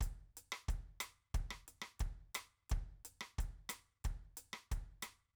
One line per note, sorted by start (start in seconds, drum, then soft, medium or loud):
0.01 kick medium
0.01 closed hi-hat medium
0.37 closed hi-hat medium
0.52 cross-stick medium
0.69 kick medium
0.69 closed hi-hat soft
1.01 cross-stick medium
1.01 closed hi-hat medium
1.35 kick medium
1.35 closed hi-hat soft
1.51 cross-stick medium
1.68 closed hi-hat soft
1.82 cross-stick medium
2.00 kick medium
2.00 closed hi-hat soft
2.35 cross-stick medium
2.35 closed hi-hat medium
2.70 kick medium
2.70 closed hi-hat soft
3.05 closed hi-hat medium
3.21 cross-stick medium
3.39 kick medium
3.39 closed hi-hat soft
3.70 cross-stick medium
3.70 closed hi-hat medium
4.05 kick medium
4.05 closed hi-hat soft
4.37 closed hi-hat medium
4.53 cross-stick medium
4.72 kick medium
4.72 closed hi-hat soft
5.03 cross-stick medium
5.03 closed hi-hat medium